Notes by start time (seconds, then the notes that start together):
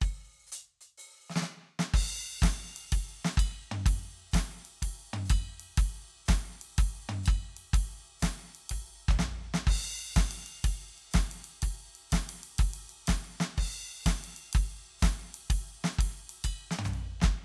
0.01 open hi-hat, kick
0.47 hi-hat pedal
0.52 closed hi-hat
0.81 closed hi-hat
0.98 open hi-hat
1.30 snare
1.35 snare, hi-hat pedal
1.42 snare
1.79 snare
1.94 kick, crash
2.39 kick, snare, hi-hat pedal
2.44 ride
2.76 ride
2.92 kick, ride
3.25 snare
3.31 hi-hat pedal
3.37 kick, ride bell
3.71 high tom
3.86 kick, ride
4.31 kick, snare, hi-hat pedal, ride
4.65 ride
4.82 kick, ride
5.13 high tom
5.25 hi-hat pedal
5.30 kick, ride bell
5.60 ride
5.77 kick, ride
6.26 kick, snare, hi-hat pedal, ride
6.61 ride
6.78 kick, ride
7.09 high tom
7.23 hi-hat pedal, ride bell
7.28 kick
7.57 ride
7.73 kick, ride
8.19 kick, snare, hi-hat pedal, ride
8.55 ride
8.69 kick, ride
9.08 kick, floor tom, hi-hat pedal
9.19 snare
9.54 snare
9.67 kick, crash
9.99 ride
10.12 hi-hat pedal
10.16 kick, snare, ride
10.31 ride
10.46 snare, ride
10.50 snare
10.52 snare
10.64 kick, ride
10.98 ride
11.11 kick, snare, hi-hat pedal, ride
11.31 ride
11.44 ride
11.48 snare
11.51 snare
11.62 kick, ride
11.95 ride
12.09 kick, snare, hi-hat pedal, ride
12.29 ride
12.43 ride
12.57 kick, snare, ride
12.74 ride
12.89 ride
13.05 kick, snare, hi-hat pedal, ride
13.40 snare
13.58 kick, crash
14.02 kick, snare, hi-hat pedal, ride
14.24 ride
14.36 ride
14.48 snare
14.53 kick, ride
14.99 kick, snare, hi-hat pedal, ride
15.34 ride
15.50 kick, ride
15.84 snare
15.91 hi-hat pedal
15.99 kick, ride
16.29 ride
16.44 kick, ride bell
16.71 snare
16.79 high tom
16.84 floor tom, hi-hat pedal
16.94 ride
17.20 kick, snare, high tom